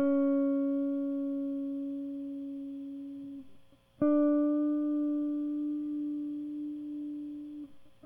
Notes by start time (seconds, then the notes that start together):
0.00 C#4
4.03 D4